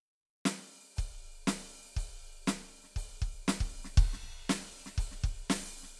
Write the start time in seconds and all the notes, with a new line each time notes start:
0.45 open hi-hat, snare
0.70 open hi-hat
0.96 open hi-hat, kick
1.47 open hi-hat, snare
1.71 open hi-hat
1.97 open hi-hat, kick
2.22 open hi-hat
2.47 open hi-hat, snare
2.70 open hi-hat
2.84 snare
2.90 snare
2.96 open hi-hat, kick
3.03 snare
3.08 snare
3.12 snare
3.16 snare
3.21 kick, open hi-hat
3.48 open hi-hat, snare
3.60 kick
3.71 open hi-hat
3.84 snare
3.97 kick, crash
4.13 snare
4.21 snare, open hi-hat
4.49 open hi-hat, snare
4.75 open hi-hat
4.86 snare
4.98 open hi-hat, kick
5.11 snare
5.24 open hi-hat, kick
5.50 open hi-hat, snare
5.76 open hi-hat
5.83 snare